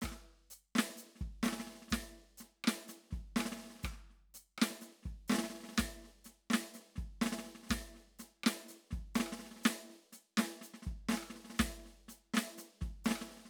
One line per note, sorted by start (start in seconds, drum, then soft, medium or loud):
0.01 kick soft
0.01 cross-stick medium
0.01 snare medium
0.01 hi-hat pedal medium
0.11 snare soft
0.50 hi-hat pedal medium
0.75 snare medium
0.78 snare loud
0.90 snare soft
0.96 snare soft
0.96 hi-hat pedal medium
1.06 snare soft
1.10 snare soft
1.13 snare soft
1.15 snare soft
1.21 kick soft
1.43 snare medium
1.43 hi-hat pedal medium
1.46 cross-stick medium
1.46 snare medium
1.53 snare medium
1.58 snare soft
1.59 snare medium
1.64 snare soft
1.67 snare soft
1.72 snare soft
1.75 snare soft
1.82 snare soft
1.88 kick soft
1.88 snare soft
1.88 hi-hat pedal medium
1.92 snare medium
2.02 snare soft
2.10 snare soft
2.13 snare soft
2.19 snare soft
2.37 snare soft
2.37 hi-hat pedal medium
2.64 cross-stick medium
2.64 snare loud
2.88 snare soft
2.88 hi-hat pedal medium
2.97 snare soft
3.03 snare soft
3.06 snare soft
3.10 kick soft
3.10 snare soft
3.21 kick soft
3.36 snare medium
3.36 hi-hat pedal medium
3.39 cross-stick medium
3.39 snare medium
3.45 snare medium
3.52 snare medium
3.57 snare soft
3.59 snare soft
3.63 snare soft
3.66 snare soft
3.70 snare soft
3.75 snare soft
3.79 snare soft
3.82 kick soft
3.82 cross-stick medium
3.82 snare soft
3.82 hi-hat pedal medium
3.93 snare soft
3.97 snare soft
4.04 snare soft
4.10 snare soft
4.34 snare soft
4.34 hi-hat pedal medium
4.58 cross-stick medium
4.58 snare loud
4.71 snare soft
4.81 snare soft
4.81 hi-hat pedal medium
4.89 snare soft
4.93 snare soft
4.97 snare soft
5.00 snare soft
5.03 kick soft
5.03 snare soft
5.11 kick soft
5.28 snare medium
5.28 hi-hat pedal medium
5.32 snare medium
5.34 snare medium
5.38 snare medium
5.44 snare medium
5.50 snare soft
5.55 snare soft
5.60 snare soft
5.64 snare soft
5.69 snare soft
5.73 snare soft
5.77 kick soft
5.77 snare soft
5.77 snare loud
5.77 hi-hat pedal medium
5.92 snare soft
5.95 snare soft
6.00 snare soft
6.04 snare soft
6.24 snare soft
6.24 hi-hat pedal medium
6.50 snare medium
6.53 snare loud
6.63 snare soft
6.74 snare soft
6.74 hi-hat pedal medium
6.81 snare soft
6.89 snare soft
6.96 kick soft
6.96 snare soft
7.21 snare medium
7.21 hi-hat pedal medium
7.26 snare medium
7.32 snare medium
7.38 snare medium
7.44 snare soft
7.46 snare soft
7.55 snare soft
7.59 snare soft
7.63 snare soft
7.67 kick soft
7.67 snare soft
7.67 hi-hat pedal medium
7.71 snare medium
7.76 kick soft
7.80 snare soft
7.87 snare soft
7.94 snare soft
7.96 snare soft
8.07 snare soft
8.10 snare soft
8.12 snare soft
8.19 snare soft
8.19 hi-hat pedal medium
8.44 cross-stick medium
8.44 snare loud
8.68 snare soft
8.68 hi-hat pedal medium
8.75 snare soft
8.91 kick soft
8.91 snare soft
8.98 kick soft
9.01 kick soft
9.15 snare medium
9.15 hi-hat pedal medium
9.20 snare medium
9.26 cross-stick medium
9.32 snare medium
9.36 snare soft
9.39 snare soft
9.43 snare soft
9.45 snare soft
9.51 snare soft
9.56 snare soft
9.61 snare soft
9.61 hi-hat pedal medium
9.65 snare loud
9.70 snare soft
9.80 snare soft
9.84 snare soft
9.87 snare soft
9.90 snare soft
10.12 snare soft
10.12 hi-hat pedal medium
10.37 snare medium
10.39 snare medium
10.43 snare medium
10.61 snare soft
10.61 hi-hat pedal medium
10.74 snare soft
10.82 snare soft
10.87 kick soft
11.09 snare medium
11.09 hi-hat pedal medium
11.11 snare medium
11.13 cross-stick medium
11.13 snare medium
11.23 cross-stick soft
11.30 snare soft
11.35 snare soft
11.40 snare soft
11.44 snare soft
11.50 snare soft
11.54 snare soft
11.58 kick soft
11.58 snare loud
11.58 hi-hat pedal medium
11.66 kick soft
11.68 kick soft
11.68 snare soft
11.79 snare soft
11.84 snare soft
11.85 snare soft
11.93 snare soft
12.08 snare soft
12.08 hi-hat pedal medium
12.34 snare medium
12.37 snare loud
12.58 snare soft
12.58 hi-hat pedal medium
12.64 snare soft
12.69 snare soft
12.72 snare soft
12.81 kick soft
12.81 snare soft
12.91 kick soft
13.04 snare loud
13.04 hi-hat pedal medium
13.09 snare medium
13.11 snare medium
13.16 cross-stick medium
13.21 snare soft
13.26 snare soft
13.28 snare soft
13.31 snare soft
13.37 snare soft
13.39 snare soft
13.45 snare soft